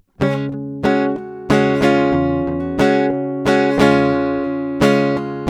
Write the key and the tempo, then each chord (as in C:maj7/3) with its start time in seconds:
C# major, 90 BPM
0.16 C#:maj(#9)/b3